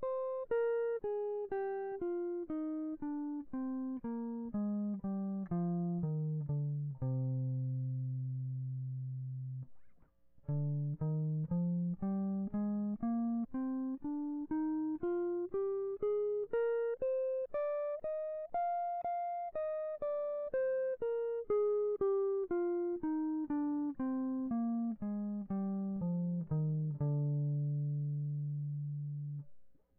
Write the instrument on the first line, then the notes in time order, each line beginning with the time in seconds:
electric guitar
0.03 C5
0.52 A#4
1.05 G#4
1.52 G4
2.02 F4
2.50 D#4
3.03 D4
3.54 C4
4.05 A#3
4.55 G#3
4.96 G3
5.05 G3
5.53 F3
6.05 D#3
6.44 D3
6.51 D3
7.04 C3
10.50 D3
11.03 D#3
11.53 F3
12.04 G3
12.55 G#3
13.04 A#3
13.55 C4
14.05 D4
14.52 D#4
15.04 F4
15.55 G4
16.03 G#4
16.54 A#4
17.02 C5
17.55 D5
18.05 D#5
18.55 F5
19.05 F5
19.56 D#5
20.03 D5
20.54 C5
21.02 A#4
21.51 G#4
22.02 G4
22.52 F4
23.04 D#4
23.51 D4
24.01 C4
24.52 A#3
25.03 G#3
25.52 G3
26.03 F3
26.53 D#3
26.93 D3
27.02 D3